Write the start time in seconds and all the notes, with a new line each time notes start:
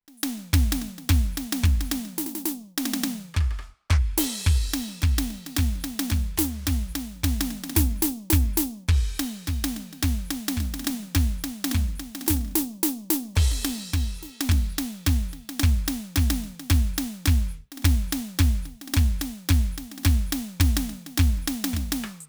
0.08 snare
0.17 hi-hat pedal
0.23 snare
0.37 snare
0.53 kick, snare
0.72 snare, hi-hat pedal
0.81 snare
0.98 snare
1.09 kick, snare
1.25 snare
1.32 hi-hat pedal
1.37 snare
1.52 snare
1.63 kick, snare
1.81 snare, hi-hat pedal
1.91 snare
2.05 snare
2.18 snare
2.26 snare
2.35 snare
2.45 snare
2.78 snare
2.85 snare
2.93 snare
3.03 snare
3.34 kick, cross-stick
3.40 cross-stick
3.51 cross-stick
3.59 cross-stick
3.90 kick, percussion
4.17 snare, crash
4.46 kick
4.63 snare
4.68 hi-hat pedal
4.73 snare
4.88 snare
5.02 kick, snare
5.18 snare, hi-hat pedal
5.30 snare
5.46 snare
5.56 kick, snare
5.75 snare
5.80 snare, hi-hat pedal
5.99 snare
6.10 kick, snare
6.37 snare, floor tom, hi-hat pedal
6.67 kick, snare
6.88 hi-hat pedal
6.95 snare
7.15 snare
7.23 kick, snare
7.41 snare, hi-hat pedal
7.50 snare
7.63 snare
7.69 snare
7.75 kick, snare
7.85 snare
7.91 snare
7.96 snare, hi-hat pedal
8.01 snare
8.02 snare
8.09 snare
8.21 snare
8.30 kick, snare
8.38 snare
8.43 snare
8.45 snare
8.53 hi-hat pedal
8.57 snare
8.66 snare
8.71 snare
8.76 snare
8.79 snare
8.88 kick, crash
9.14 hi-hat pedal
9.19 snare
9.47 kick, snare
9.64 snare, hi-hat pedal
9.76 snare
9.93 snare
10.02 kick, snare
10.25 hi-hat pedal
10.30 snare
10.48 snare
10.57 kick, snare
10.74 snare, hi-hat pedal
10.79 snare
10.84 snare
10.87 snare
11.03 snare
11.15 kick, snare
11.27 snare
11.32 snare
11.38 hi-hat pedal
11.44 snare
11.64 snare
11.71 kick, snare
11.88 snare
11.95 hi-hat pedal
11.99 snare
12.15 snare
12.21 snare
12.26 kick, snare
12.37 snare
12.41 snare
12.44 snare
12.48 snare
12.55 snare
12.64 snare
12.73 snare
12.83 snare
12.93 snare
12.99 snare
13.10 snare
13.19 snare
13.23 snare
13.25 snare
13.35 kick, crash
13.51 snare
13.61 snare, hi-hat pedal
13.78 snare
13.93 kick, snare
14.14 hi-hat pedal
14.22 snare
14.41 snare
14.49 kick, snare
14.68 hi-hat pedal
14.78 snare
15.06 kick, snare
15.28 hi-hat pedal
15.33 snare
15.49 snare
15.59 kick, snare
15.85 snare, hi-hat pedal
16.16 kick, snare
16.30 snare
16.34 hi-hat pedal
16.43 snare
16.59 snare
16.70 kick, snare
16.93 hi-hat pedal
16.98 snare
17.25 kick, snare
17.48 hi-hat pedal
17.72 snare
17.77 snare
17.82 kick, snare
17.85 snare
18.08 hi-hat pedal
18.12 snare
18.39 kick, snare
18.62 snare, hi-hat pedal
18.81 snare
18.87 snare
18.94 kick, snare
19.18 snare, hi-hat pedal
19.49 kick, snare
19.71 hi-hat pedal
19.78 snare
19.91 snare
19.98 snare
20.03 kick, snare
20.26 hi-hat pedal
20.32 snare
20.60 kick, snare
20.77 snare, hi-hat pedal
20.89 snare
21.06 snare
21.17 kick, snare
21.37 snare
21.41 hi-hat pedal
21.47 snare
21.64 snare
21.73 kick, snare
21.92 snare, hi-hat pedal
22.04 cross-stick
22.20 closed hi-hat